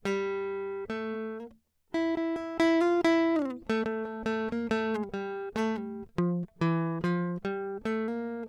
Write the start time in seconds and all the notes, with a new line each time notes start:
0.07 G3
0.92 A3
1.96 E4
2.17 E4
2.38 E4
2.62 E4
2.83 F4
3.07 E4
3.71 A3
3.89 A3
4.07 A3
4.28 A3
4.55 A#3
4.73 A3
5.16 G3
5.58 A3
5.78 G3
6.20 F3
6.63 E3
7.06 F3
7.47 G3
7.87 A3
8.10 A#3